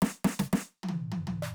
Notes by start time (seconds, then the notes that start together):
0.02 snare
0.24 snare
0.39 snare
0.53 snare
0.83 high tom
0.88 high tom
1.12 high tom
1.27 high tom
1.42 percussion